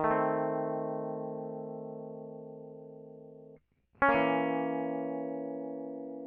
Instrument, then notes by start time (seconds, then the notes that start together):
electric guitar
0.00 D#3
0.05 A3
0.11 C4
4.03 C#4
4.09 A#3
4.16 E3